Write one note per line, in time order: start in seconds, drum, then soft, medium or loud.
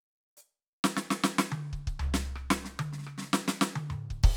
0.37 hi-hat pedal medium
0.84 snare loud
0.97 snare medium
1.10 snare loud
1.24 snare loud
1.38 snare loud
1.52 high tom loud
1.73 kick medium
1.87 kick medium
1.99 floor tom loud
2.14 snare loud
2.24 snare soft
2.36 cross-stick medium
2.50 snare loud
2.65 snare medium
2.79 high tom loud
2.92 snare soft
2.98 snare soft
3.02 snare soft
3.07 cross-stick medium
3.18 snare medium
3.21 snare medium
3.25 snare soft
3.33 snare loud
3.48 snare loud
3.61 snare loud
3.75 high tom loud
3.90 mid tom loud
4.10 kick medium
4.23 kick loud
4.23 crash medium